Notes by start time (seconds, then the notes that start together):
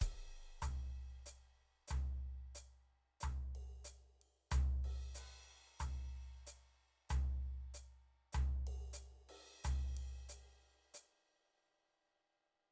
0.01 kick, hi-hat pedal, crash
0.62 floor tom, hi-hat pedal
1.27 hi-hat pedal
1.88 floor tom, hi-hat pedal
2.56 hi-hat pedal
3.21 floor tom, hi-hat pedal
3.56 crash
3.85 hi-hat pedal
4.22 ride
4.52 floor tom, hi-hat pedal
4.85 crash
5.15 hi-hat pedal, crash
5.80 floor tom, hi-hat pedal
6.47 hi-hat pedal
7.10 floor tom, hi-hat pedal
7.75 hi-hat pedal
8.33 floor tom, hi-hat pedal
8.68 crash
8.94 hi-hat pedal
9.30 crash
9.65 floor tom, hi-hat pedal
9.97 ride
10.11 ride
10.30 hi-hat pedal, crash
10.95 hi-hat pedal